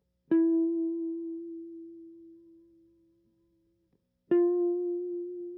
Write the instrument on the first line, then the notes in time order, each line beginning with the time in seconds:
electric guitar
0.33 E4
4.31 F4